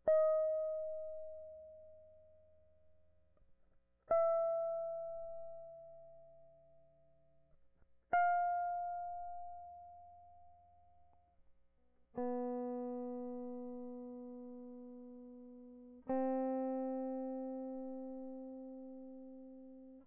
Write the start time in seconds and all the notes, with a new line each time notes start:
0.08 D#5
4.12 E5
8.14 F5
12.18 B3
16.10 C4